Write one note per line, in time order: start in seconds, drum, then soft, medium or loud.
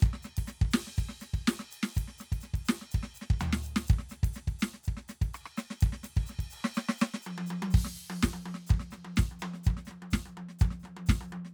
0.01 kick loud
0.01 hi-hat pedal medium
0.01 ride soft
0.14 snare soft
0.23 snare soft
0.23 hi-hat pedal medium
0.38 kick medium
0.38 ride medium
0.47 snare medium
0.47 hi-hat pedal medium
0.62 kick loud
0.71 snare loud
0.71 hi-hat pedal medium
0.71 crash medium
0.88 snare soft
0.97 kick medium
0.97 hi-hat pedal medium
1.09 snare soft
1.21 snare soft
1.21 hi-hat pedal medium
1.21 ride medium
1.34 kick medium
1.34 ride soft
1.48 snare loud
1.48 hi-hat pedal medium
1.48 ride medium
1.60 snare medium
1.72 hi-hat pedal medium
1.72 ride medium
1.83 snare medium
1.95 kick medium
1.95 hi-hat pedal medium
1.99 ride medium
2.08 snare soft
2.19 snare soft
2.19 hi-hat pedal medium
2.19 ride medium
2.33 kick medium
2.33 ride medium
2.41 snare soft
2.41 hi-hat pedal medium
2.54 kick medium
2.54 ride medium
2.66 snare loud
2.66 hi-hat pedal medium
2.66 ride medium
2.82 snare soft
2.92 kick medium
2.92 hi-hat pedal medium
2.92 ride medium
3.04 snare medium
3.15 hi-hat pedal medium
3.15 ride medium
3.22 snare soft
3.31 kick loud
3.40 floor tom loud
3.40 hi-hat pedal medium
3.53 snare medium
3.63 hi-hat pedal medium
3.63 ride medium
3.77 snare loud
3.87 kick loud
3.87 hi-hat pedal medium
3.87 ride medium
3.99 snare soft
4.10 snare soft
4.10 hi-hat pedal medium
4.10 ride soft
4.24 kick loud
4.24 ride medium
4.34 snare soft
4.34 hi-hat pedal medium
4.48 kick medium
4.48 ride soft
4.60 snare loud
4.60 hi-hat pedal medium
4.60 ride medium
4.74 snare soft
4.84 hi-hat pedal medium
4.84 ride soft
4.88 kick medium
4.98 snare soft
5.09 snare soft
5.09 hi-hat pedal medium
5.09 ride soft
5.22 kick medium
5.22 ride medium
5.34 cross-stick medium
5.34 hi-hat pedal medium
5.34 ride medium
5.46 cross-stick medium
5.58 snare medium
5.58 hi-hat pedal medium
5.71 snare medium
5.81 kick loud
5.81 hi-hat pedal medium
5.81 ride medium
5.93 snare soft
6.04 snare soft
6.04 hi-hat pedal medium
6.04 ride medium
6.17 kick loud
6.17 ride medium
6.27 snare soft
6.27 hi-hat pedal medium
6.39 kick medium
6.39 ride medium
6.51 hi-hat pedal medium
6.51 ride medium
6.65 snare medium
6.75 snare medium
6.75 hi-hat pedal medium
6.89 snare loud
6.98 snare loud
6.98 hi-hat pedal medium
7.14 snare medium
7.23 hi-hat pedal medium
7.27 high tom medium
7.38 high tom loud
7.47 hi-hat pedal medium
7.51 high tom loud
7.63 high tom loud
7.71 kick loud
7.71 hi-hat pedal medium
7.71 crash medium
7.85 snare medium
7.96 hi-hat pedal medium
8.11 high tom loud
8.23 kick medium
8.23 snare loud
8.23 hi-hat pedal medium
8.34 high tom medium
8.41 hi-hat pedal soft
8.46 high tom medium
8.55 snare soft
8.67 kick loud
8.67 hi-hat pedal loud
8.67 high tom medium
8.80 snare soft
8.91 snare soft
8.91 hi-hat pedal medium
8.91 high tom medium
9.05 high tom medium
9.17 kick loud
9.17 snare loud
9.17 hi-hat pedal medium
9.32 high tom soft
9.40 hi-hat pedal medium
9.40 high tom medium
9.54 snare soft
9.64 kick loud
9.64 hi-hat pedal medium
9.68 high tom medium
9.78 snare soft
9.86 hi-hat pedal medium
9.92 high tom medium
10.03 high tom medium
10.11 kick medium
10.11 snare loud
10.11 hi-hat pedal medium
10.26 high tom medium
10.38 high tom medium
10.49 snare soft
10.60 kick loud
10.60 hi-hat pedal loud
10.60 high tom medium
10.71 snare soft
10.80 snare soft
10.80 hi-hat pedal soft
10.86 high tom medium
10.97 high tom medium
11.07 kick loud
11.07 snare loud
11.07 hi-hat pedal medium
11.21 high tom medium
11.29 hi-hat pedal soft
11.33 high tom medium
11.46 snare soft